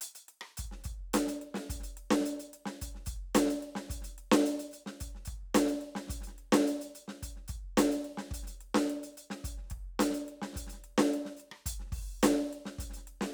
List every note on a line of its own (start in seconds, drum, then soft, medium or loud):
0.01 closed hi-hat loud
0.15 closed hi-hat medium
0.28 closed hi-hat soft
0.41 cross-stick medium
0.57 closed hi-hat medium
0.57 kick soft
0.64 kick soft
0.67 kick soft
0.71 snare soft
0.79 snare soft
0.84 closed hi-hat medium
0.84 kick soft
1.13 closed hi-hat loud
1.13 snare medium
1.27 closed hi-hat medium
1.27 snare soft
1.41 closed hi-hat soft
1.54 snare medium
1.69 closed hi-hat medium
1.69 kick soft
1.69 snare soft
1.75 kick soft
1.80 closed hi-hat medium
1.80 snare soft
1.84 snare soft
1.88 snare soft
1.97 closed hi-hat soft
2.11 snare loud
2.20 snare soft
2.25 closed hi-hat medium
2.39 closed hi-hat medium
2.53 closed hi-hat medium
2.66 snare medium
2.81 closed hi-hat medium
2.81 kick soft
2.95 snare soft
3.00 snare soft
3.05 closed hi-hat medium
3.05 kick soft
3.05 hi-hat pedal soft
3.16 kick soft
3.34 closed hi-hat loud
3.34 snare loud
3.45 snare soft
3.50 open hi-hat medium
3.62 closed hi-hat soft
3.75 snare medium
3.87 closed hi-hat medium
3.87 kick soft
3.87 snare soft
4.01 closed hi-hat medium
4.01 snare soft
4.06 snare soft
4.18 closed hi-hat soft
4.31 snare loud
4.39 snare soft
4.46 closed hi-hat medium
4.55 snare soft
4.59 closed hi-hat medium
4.71 closed hi-hat medium
4.71 hi-hat pedal soft
4.86 snare medium
5.00 closed hi-hat medium
5.00 kick soft
5.15 snare soft
5.21 snare soft
5.25 closed hi-hat medium
5.25 kick soft
5.35 kick soft
5.54 closed hi-hat medium
5.54 snare loud
5.65 closed hi-hat soft
5.65 snare soft
5.81 closed hi-hat soft
5.95 snare medium
6.07 closed hi-hat medium
6.07 kick soft
6.07 snare soft
6.15 kick soft
6.21 closed hi-hat soft
6.21 snare soft
6.27 snare soft
6.38 closed hi-hat soft
6.52 snare loud
6.60 snare soft
6.67 closed hi-hat medium
6.78 closed hi-hat medium
6.78 snare soft
6.95 closed hi-hat medium
7.08 snare medium
7.22 closed hi-hat medium
7.22 kick soft
7.36 snare soft
7.48 closed hi-hat medium
7.48 kick soft
7.57 kick soft
7.77 closed hi-hat medium
7.77 snare loud
7.87 snare soft
7.91 closed hi-hat medium
8.04 closed hi-hat soft
8.17 snare medium
8.28 kick soft
8.28 snare soft
8.34 closed hi-hat medium
8.34 kick soft
8.43 snare soft
8.47 closed hi-hat medium
8.47 snare soft
8.61 closed hi-hat soft
8.74 snare loud
8.85 snare soft
8.89 closed hi-hat soft
9.00 open hi-hat soft
9.00 snare soft
9.04 snare soft
9.08 snare soft
9.12 hi-hat pedal soft
9.17 closed hi-hat medium
9.30 snare medium
9.44 closed hi-hat medium
9.44 kick soft
9.50 kick soft
9.57 snare soft
9.62 snare soft
9.65 snare soft
9.70 kick soft
9.70 closed hi-hat medium
9.99 closed hi-hat medium
9.99 snare loud
10.10 closed hi-hat medium
10.10 snare soft
10.25 closed hi-hat soft
10.25 hi-hat pedal soft
10.42 snare medium
10.53 kick soft
10.53 snare soft
10.57 closed hi-hat medium
10.67 closed hi-hat medium
10.67 snare soft
10.73 snare soft
10.84 closed hi-hat soft
10.98 snare loud
11.13 closed hi-hat soft
11.25 snare soft
11.36 closed hi-hat soft
11.36 hi-hat pedal soft
11.51 cross-stick medium
11.66 closed hi-hat loud
11.66 kick soft
11.72 kick soft
11.79 snare soft
11.86 snare soft
11.90 open hi-hat medium
11.90 kick soft
11.90 snare soft
11.98 kick soft
12.02 kick soft
12.20 closed hi-hat loud
12.20 snare loud
12.20 hi-hat pedal soft
12.31 snare soft
12.53 closed hi-hat soft
12.65 snare medium
12.78 closed hi-hat medium
12.78 kick soft
12.78 snare soft
12.90 closed hi-hat medium
12.90 snare soft
12.97 snare soft
13.07 closed hi-hat soft
13.21 snare medium